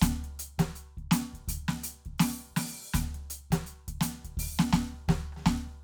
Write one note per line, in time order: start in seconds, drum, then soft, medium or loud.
0.01 closed hi-hat loud
0.01 kick loud
0.01 snare loud
0.01 hi-hat pedal soft
0.25 closed hi-hat soft
0.40 closed hi-hat loud
0.59 kick medium
0.59 snare loud
0.59 closed hi-hat medium
0.76 closed hi-hat medium
0.98 kick soft
0.98 closed hi-hat soft
1.12 closed hi-hat loud
1.12 snare loud
1.34 kick soft
1.34 closed hi-hat soft
1.48 closed hi-hat loud
1.48 kick medium
1.69 snare loud
1.84 closed hi-hat loud
2.05 kick soft
2.05 closed hi-hat soft
2.19 open hi-hat loud
2.19 snare loud
2.19 hi-hat pedal soft
2.52 kick soft
2.57 open hi-hat loud
2.57 snare loud
2.94 open hi-hat loud
2.94 kick medium
2.94 snare loud
2.94 hi-hat pedal soft
3.15 closed hi-hat soft
3.30 closed hi-hat loud
3.51 kick medium
3.51 snare loud
3.51 closed hi-hat medium
3.67 closed hi-hat medium
3.88 kick medium
3.88 closed hi-hat medium
4.01 closed hi-hat loud
4.01 snare loud
4.25 kick soft
4.25 closed hi-hat medium
4.38 open hi-hat loud
4.38 kick medium
4.59 snare loud
4.73 kick medium
4.73 snare loud
5.04 cross-stick soft
5.09 kick medium
5.09 snare loud
5.33 cross-stick soft
5.37 snare soft
5.40 snare soft
5.42 snare soft
5.46 kick medium
5.46 snare loud